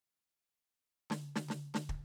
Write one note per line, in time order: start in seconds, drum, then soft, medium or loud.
1.10 snare medium
1.10 high tom medium
1.36 snare medium
1.36 high tom medium
1.49 snare medium
1.49 high tom medium
1.74 snare medium
1.74 high tom medium
1.89 kick medium